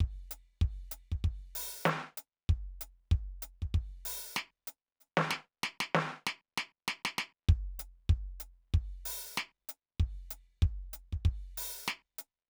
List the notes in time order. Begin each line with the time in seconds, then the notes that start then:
0.01 kick
0.06 crash
0.32 closed hi-hat
0.62 kick
0.66 crash
0.92 closed hi-hat
1.12 kick
1.25 kick
1.29 crash
1.56 open hi-hat
1.86 snare, hi-hat pedal
2.18 closed hi-hat
2.50 kick
2.82 closed hi-hat
3.12 kick
3.43 closed hi-hat
3.63 kick
3.75 kick, crash
4.06 open hi-hat
4.37 snare, hi-hat pedal
4.68 closed hi-hat
5.01 hi-hat pedal
5.18 snare
5.31 snare
5.64 snare
5.81 snare
5.95 snare
6.27 snare
6.58 snare
6.89 snare
7.06 snare
7.19 snare
7.49 kick
7.80 closed hi-hat
8.10 kick
8.41 closed hi-hat
8.74 kick
8.79 crash
9.06 open hi-hat
9.38 snare, hi-hat pedal
9.69 closed hi-hat
10.00 kick
10.05 crash
10.31 closed hi-hat
10.63 kick
10.94 closed hi-hat
11.13 kick
11.26 kick, crash
11.58 open hi-hat
11.88 snare, hi-hat pedal
12.19 closed hi-hat